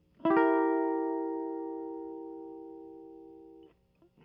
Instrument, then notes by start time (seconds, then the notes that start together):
electric guitar
0.26 E4
0.31 G4
0.37 A#4